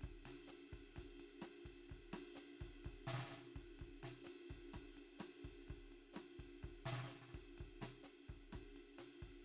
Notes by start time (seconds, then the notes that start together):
0.01 kick, ride
0.09 kick
0.22 kick, ride
0.26 snare
0.47 hi-hat pedal, ride
0.72 kick, ride
0.85 snare
0.96 kick, snare, ride
1.03 kick
1.20 ride
1.42 cross-stick, hi-hat pedal, ride
1.65 kick, ride
1.89 kick, ride
1.96 kick
2.13 cross-stick, snare, ride
2.35 hi-hat pedal, ride
2.61 kick, ride
2.66 kick
2.84 kick, ride
2.91 kick
3.07 snare, ride
3.13 snare
3.19 snare
3.24 snare
3.28 snare, hi-hat pedal
3.32 ride
3.37 snare
3.44 snare
3.53 kick, snare, ride
3.61 kick
3.79 kick, ride
3.86 kick
4.03 snare, ride
4.24 hi-hat pedal, ride
4.50 kick, ride
4.55 kick
4.73 kick, cross-stick, snare, ride
4.81 kick
4.97 ride
5.19 cross-stick, snare, hi-hat pedal, ride
5.44 kick, ride
5.49 kick
5.68 kick, ride
5.75 kick
5.92 ride
6.13 cross-stick, snare, hi-hat pedal, ride
6.39 kick, ride
6.63 kick, ride
6.69 kick
6.85 snare, ride
6.92 snare
6.97 snare
7.04 snare, hi-hat pedal
7.09 snare, ride
7.15 snare
7.21 snare
7.28 snare
7.34 kick, snare, ride
7.39 kick, snare
7.43 snare
7.58 kick, ride
7.65 kick
7.81 cross-stick, snare, ride
8.03 hi-hat pedal, ride
8.28 kick, ride
8.34 kick
8.52 kick, cross-stick, ride
8.59 kick
8.76 ride
8.98 snare, hi-hat pedal, ride
9.22 kick, ride
9.27 kick